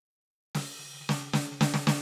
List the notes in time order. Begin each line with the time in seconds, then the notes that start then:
0.55 snare, crash
0.79 snare
0.84 snare
0.89 snare
0.94 snare
1.01 snare
1.09 snare
1.20 snare
1.26 snare
1.34 snare
1.45 snare
1.52 snare
1.58 snare
1.61 snare
1.74 snare
1.87 snare